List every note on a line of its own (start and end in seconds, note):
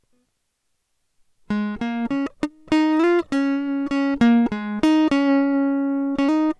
1.51 1.79 G#3
1.82 2.10 A#3
2.12 2.32 C#4
2.44 2.52 D4
2.73 3.04 D#4
3.05 3.25 F4
3.33 3.91 C#4
3.92 4.20 C#4
4.22 4.50 A#3
4.53 4.83 G#3
4.84 5.10 D#4
5.13 6.20 C#4
6.20 6.29 C#4
6.29 6.57 D#4